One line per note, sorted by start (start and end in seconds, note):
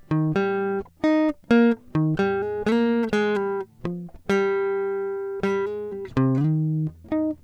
0.12 0.37 D#3
0.37 0.85 G3
1.05 1.35 D#4
1.52 1.78 A#3
1.96 2.18 D#3
2.21 2.43 G3
2.44 2.66 G#3
2.68 3.09 A#3
3.15 3.37 G#3
3.38 3.68 G3
3.87 4.11 F3
4.31 5.42 G3
5.45 5.68 G3
5.68 5.93 G#3
5.93 6.12 G3
6.18 6.36 C3
6.37 6.96 D#3